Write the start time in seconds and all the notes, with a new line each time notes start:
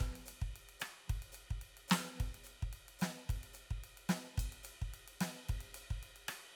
0.01 kick, ride
0.13 cross-stick, ride
0.22 cross-stick
0.26 hi-hat pedal, ride
0.42 kick
0.56 snare, ride
0.69 ride
0.80 cross-stick, hi-hat pedal, ride
1.08 kick, snare, ride
1.14 snare
1.18 snare
1.23 ride
1.33 hi-hat pedal, ride
1.51 kick
1.62 ride
1.78 ride
1.89 snare, hi-hat pedal, ride
2.20 kick, snare, ride
2.35 ride
2.44 hi-hat pedal, ride
2.63 kick
2.73 ride
2.89 ride
2.99 snare, hi-hat pedal, ride
3.26 kick, snare
3.31 ride
3.37 kick
3.44 ride
3.54 hi-hat pedal, ride
3.71 kick
3.84 ride
3.98 ride
4.09 snare, hi-hat pedal, ride
4.38 kick, ride bell
4.44 kick
4.53 ride
4.64 hi-hat pedal, ride
4.82 kick
4.94 ride
5.08 ride
5.21 snare, hi-hat pedal, ride
5.49 kick, ride
5.61 ride
5.75 hi-hat pedal, ride
5.91 kick
5.96 snare
6.01 snare, ride
6.17 ride
6.29 cross-stick, hi-hat pedal, ride